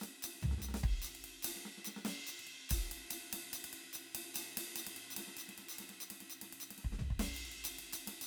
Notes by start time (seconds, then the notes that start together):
0.01 snare, hi-hat pedal, ride
0.22 hi-hat pedal, ride
0.34 snare
0.41 floor tom, hi-hat pedal
0.51 snare
0.58 snare, hi-hat pedal
0.62 snare
0.68 snare
0.74 snare
0.80 kick, hi-hat pedal
0.84 ride
1.02 hi-hat pedal, ride
1.15 ride
1.21 hi-hat pedal, ride
1.42 hi-hat pedal, ride
1.56 snare
1.65 snare
1.77 snare
1.84 snare, hi-hat pedal
1.96 snare
2.04 snare, hi-hat pedal, ride
2.27 hi-hat pedal, ride
2.39 ride
2.47 ride
2.69 kick, hi-hat pedal, ride
2.88 hi-hat pedal, ride
3.10 hi-hat pedal, ride
3.30 snare, hi-hat pedal, ride
3.53 hi-hat pedal, ride
3.64 ride
3.73 ride
3.84 snare
3.93 hi-hat pedal, ride
4.12 hi-hat pedal, ride
4.34 hi-hat pedal, ride
4.56 snare, ride
4.76 hi-hat pedal, ride
4.86 snare, ride
4.96 ride
5.10 hi-hat pedal
5.16 snare, ride
5.27 snare
5.37 hi-hat pedal, ride
5.48 snare, ride
5.58 snare, ride
5.68 hi-hat pedal
5.78 snare, ride
5.89 snare, ride
6.00 hi-hat pedal
6.10 snare, ride
6.20 snare, ride
6.30 hi-hat pedal
6.41 snare, ride
6.52 ride
6.60 hi-hat pedal
6.70 snare, ride
6.78 snare, ride
6.84 kick
6.92 snare, floor tom
6.98 snare, floor tom
7.10 kick
7.19 snare, ride
7.33 hi-hat pedal, ride
7.45 ride
7.51 ride
7.57 snare
7.64 hi-hat pedal, ride
7.78 hi-hat pedal, ride
7.92 hi-hat pedal, ride
8.06 snare, hi-hat pedal, ride
8.21 hi-hat pedal, ride